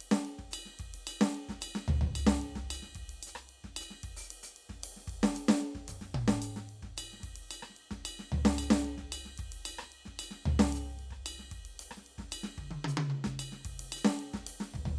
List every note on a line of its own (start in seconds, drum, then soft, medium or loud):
0.01 ride medium
0.12 snare loud
0.25 ride soft
0.39 kick soft
0.39 snare soft
0.51 hi-hat pedal medium
0.51 ride bell loud
0.66 snare soft
0.74 cross-stick soft
0.79 kick soft
0.79 ride medium
0.86 kick soft
0.94 snare soft
0.94 ride medium
0.97 snare soft
1.07 hi-hat pedal medium
1.07 ride bell loud
1.21 snare loud
1.35 ride soft
1.49 kick soft
1.49 snare soft
1.61 hi-hat pedal medium
1.61 ride bell loud
1.75 snare medium
1.88 kick soft
1.88 floor tom loud
1.95 kick soft
2.01 floor tom loud
2.16 hi-hat pedal medium
2.16 ride bell loud
2.27 snare loud
2.42 ride medium
2.56 kick soft
2.56 snare soft
2.71 hi-hat pedal medium
2.71 ride bell loud
2.83 snare soft
2.88 cross-stick soft
2.95 kick soft
2.95 ride medium
3.10 ride medium
3.23 ride bell medium
3.27 hi-hat pedal medium
3.35 cross-stick medium
3.42 cross-stick soft
3.49 ride soft
3.64 kick soft
3.64 snare soft
3.77 hi-hat pedal medium
3.77 ride bell loud
3.91 snare soft
4.04 kick soft
4.04 ride medium
4.17 open hi-hat loud
4.25 hi-hat pedal soft
4.31 ride medium
4.43 open hi-hat loud
4.57 ride medium
4.70 kick soft
4.70 snare soft
4.83 hi-hat pedal medium
4.83 ride loud
4.97 snare soft
5.08 kick medium
5.08 ride soft
5.14 kick soft
5.23 snare loud
5.34 hi-hat pedal medium
5.34 ride medium
5.49 snare loud
5.61 ride soft
5.75 kick soft
5.75 snare soft
5.88 hi-hat pedal medium
5.88 ride medium
5.88 floor tom soft
6.02 snare soft
6.15 kick medium
6.15 mid tom loud
6.21 kick soft
6.25 kick soft
6.25 snare loud
6.42 hi-hat pedal medium
6.42 ride bell medium
6.56 snare soft
6.69 ride soft
6.83 kick soft
6.83 snare soft
6.97 hi-hat pedal medium
6.97 ride bell loud
7.13 snare soft
7.20 kick soft
7.20 snare soft
7.20 ride medium
7.36 ride medium
7.51 hi-hat pedal medium
7.51 ride bell loud
7.63 cross-stick medium
7.70 snare soft
7.77 ride soft
7.91 kick soft
7.91 snare soft
8.05 hi-hat pedal medium
8.05 ride bell loud
8.20 snare soft
8.32 floor tom loud
8.45 snare loud
8.59 hi-hat pedal medium
8.59 ride bell loud
8.71 snare loud
8.85 ride soft
8.98 kick soft
8.98 snare soft
9.12 hi-hat pedal medium
9.12 ride bell loud
9.26 snare soft
9.38 kick soft
9.38 ride medium
9.46 kick soft
9.52 ride medium
9.66 hi-hat pedal medium
9.66 ride bell loud
9.79 cross-stick medium
9.83 cross-stick soft
9.92 ride soft
10.06 kick soft
10.06 snare soft
10.19 hi-hat pedal medium
10.19 ride bell loud
10.31 snare soft
10.46 floor tom loud
10.60 snare loud
10.73 hi-hat pedal medium
10.73 ride medium
10.99 ride soft
11.11 kick soft
11.11 cross-stick soft
11.26 hi-hat pedal medium
11.26 ride bell loud
11.40 snare soft
11.52 kick soft
11.52 ride medium
11.57 kick soft
11.66 ride medium
11.80 hi-hat pedal medium
11.80 ride medium
11.91 cross-stick medium
11.97 snare soft
12.07 ride soft
12.18 kick soft
12.18 snare soft
12.24 kick soft
12.32 hi-hat pedal medium
12.32 ride bell loud
12.44 snare medium
12.58 kick soft
12.58 high tom medium
12.71 high tom medium
12.85 hi-hat pedal medium
12.85 high tom loud
12.98 high tom loud
13.10 high tom soft
13.24 kick soft
13.24 snare medium
13.31 kick soft
13.40 hi-hat pedal medium
13.40 ride bell loud
13.52 snare soft
13.61 cross-stick soft
13.65 kick soft
13.65 ride medium
13.72 kick soft
13.80 ride medium
13.93 ride bell loud
13.97 hi-hat pedal medium
14.05 snare loud
14.19 ride medium
14.34 kick soft
14.34 snare medium
14.47 hi-hat pedal medium
14.47 ride loud
14.60 snare medium
14.74 kick soft
14.74 floor tom medium
14.82 kick soft
14.86 floor tom loud